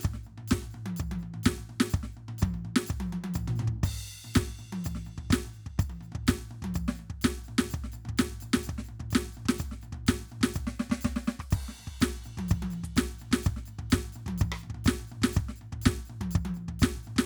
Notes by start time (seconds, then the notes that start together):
0.01 kick, floor tom, percussion
0.14 snare
0.23 floor tom, percussion
0.38 floor tom
0.48 snare, percussion
0.52 kick
0.62 floor tom
0.70 floor tom, percussion
0.86 high tom
0.96 kick, floor tom, percussion
1.11 high tom
1.19 percussion
1.23 floor tom
1.34 floor tom
1.43 kick, snare, percussion
1.58 floor tom
1.69 floor tom
1.80 snare
1.90 kick, percussion
1.94 floor tom
2.03 snare
2.12 percussion
2.17 floor tom
2.29 floor tom
2.38 high tom, percussion
2.43 kick
2.54 floor tom
2.65 floor tom
2.76 snare
2.87 kick, floor tom, percussion
3.00 high tom
3.07 percussion
3.13 high tom
3.24 high tom
3.34 kick, floor tom, percussion
3.48 floor tom
3.56 floor tom, percussion
3.68 kick
3.83 kick, crash, percussion
4.07 percussion
4.25 floor tom
4.34 kick, snare, percussion
4.47 floor tom
4.58 floor tom, percussion
4.73 high tom
4.84 kick, floor tom, percussion
4.95 snare
5.05 floor tom, percussion
5.18 kick, floor tom
5.30 kick, snare, percussion
5.45 floor tom
5.53 percussion
5.66 kick
5.78 kick, floor tom, percussion
5.90 high tom
6.01 floor tom, percussion
6.12 kick, floor tom
6.27 kick, snare, percussion
6.38 floor tom
6.48 floor tom, percussion
6.62 kick, high tom
6.74 kick, floor tom, percussion
6.88 snare
6.96 floor tom, percussion
7.10 kick
7.22 kick, snare, percussion
7.38 floor tom
7.44 percussion
7.48 floor tom
7.58 kick, snare
7.70 kick, floor tom, percussion
7.84 snare
7.92 floor tom, percussion
8.05 kick, floor tom
8.18 kick, snare, percussion
8.31 floor tom
8.40 floor tom, percussion
8.54 kick, snare
8.63 floor tom, percussion
8.69 kick
8.78 snare
8.84 percussion
8.89 floor tom
9.00 kick, floor tom
9.11 kick, percussion
9.15 snare
9.25 floor tom
9.33 percussion
9.37 floor tom
9.46 kick, snare
9.59 kick, percussion
9.63 floor tom
9.71 snare
9.81 floor tom, percussion
9.93 kick, floor tom
10.07 kick, snare, percussion
10.20 floor tom
10.28 floor tom, percussion
10.41 kick, snare
10.54 kick, floor tom, percussion
10.67 snare
10.76 percussion
10.80 snare
10.90 kick, snare
11.01 kick, snare, percussion
11.16 snare
11.24 snare, percussion
11.39 kick, cross-stick
11.51 kick, crash, percussion
11.68 snare
11.74 percussion
11.79 floor tom
11.87 kick
12.01 kick, snare, percussion
12.14 floor tom
12.24 floor tom, percussion
12.38 kick, high tom
12.49 kick, floor tom, percussion
12.62 high tom
12.71 floor tom, percussion
12.84 kick, floor tom
12.96 kick, snare, percussion
13.10 floor tom
13.19 floor tom, percussion
13.32 kick, snare
13.43 kick, floor tom, percussion
13.56 snare
13.66 floor tom, percussion
13.79 kick, floor tom
13.90 kick, snare, percussion
14.04 floor tom
14.13 floor tom, percussion
14.26 kick, high tom
14.38 kick, floor tom, percussion
14.52 high tom
14.58 percussion
14.63 floor tom
14.70 kick
14.75 floor tom
14.85 kick, snare, percussion
15.00 floor tom
15.07 percussion
15.12 floor tom
15.22 kick, snare
15.33 kick, percussion
15.38 floor tom
15.49 snare
15.56 percussion
15.61 floor tom
15.72 kick, floor tom
15.82 percussion
15.86 kick, snare
15.98 floor tom
16.05 percussion
16.10 floor tom
16.21 kick, high tom
16.31 percussion
16.35 kick
16.45 high tom
16.54 floor tom, percussion
16.68 kick, floor tom
16.80 kick, snare, percussion
16.96 floor tom
17.03 percussion
17.07 floor tom
17.16 kick, snare